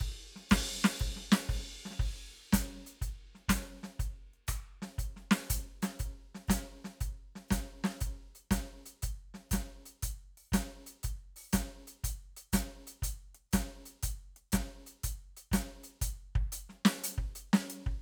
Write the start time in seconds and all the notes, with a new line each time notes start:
0.01 kick, ride
0.36 snare
0.50 kick, snare, hi-hat pedal, ride
0.73 hi-hat pedal
0.84 snare
0.97 kick, hi-hat pedal, ride
1.16 snare
1.32 snare
1.49 kick, hi-hat pedal, ride
1.86 snare
1.91 snare
2.00 kick, crash
2.35 closed hi-hat
2.53 closed hi-hat, kick, snare
2.87 closed hi-hat
3.02 closed hi-hat, kick
3.35 snare
3.49 closed hi-hat, kick, snare
3.83 snare
4.00 closed hi-hat, kick
4.34 closed hi-hat
4.47 closed hi-hat, kick, cross-stick, hi-hat pedal
4.82 snare
4.98 closed hi-hat, kick
5.17 snare
5.31 snare
5.50 closed hi-hat, kick
5.83 closed hi-hat, snare
5.99 closed hi-hat, kick
6.35 snare
6.48 closed hi-hat, kick, snare, hi-hat pedal
6.85 snare
7.01 closed hi-hat, kick
7.36 snare
7.48 closed hi-hat, kick, snare, hi-hat pedal
7.84 snare
8.01 closed hi-hat, kick
8.35 open hi-hat
8.51 closed hi-hat, kick, snare
8.86 closed hi-hat
9.03 closed hi-hat, kick
9.34 snare
9.49 closed hi-hat, kick, snare, hi-hat pedal
9.86 closed hi-hat
10.03 closed hi-hat, kick
10.38 open hi-hat
10.52 closed hi-hat, kick, snare
10.87 closed hi-hat
11.03 closed hi-hat, kick
11.36 open hi-hat
11.50 closed hi-hat, kick, snare, hi-hat pedal
11.88 closed hi-hat
12.04 closed hi-hat, kick
12.37 open hi-hat
12.53 open hi-hat, kick, snare, hi-hat pedal
12.87 closed hi-hat
13.03 closed hi-hat, kick
13.35 closed hi-hat
13.51 closed hi-hat, kick, snare, hi-hat pedal
13.86 closed hi-hat
14.03 closed hi-hat, kick
14.36 closed hi-hat
14.52 open hi-hat, kick, snare, hi-hat pedal
14.87 closed hi-hat
15.04 closed hi-hat, kick
15.37 closed hi-hat
15.52 open hi-hat, kick, snare, hi-hat pedal
15.84 closed hi-hat
16.02 closed hi-hat, kick
16.36 kick
16.52 closed hi-hat
16.69 snare
16.85 snare
17.04 closed hi-hat
17.18 kick
17.36 closed hi-hat
17.53 snare
17.70 closed hi-hat
17.86 kick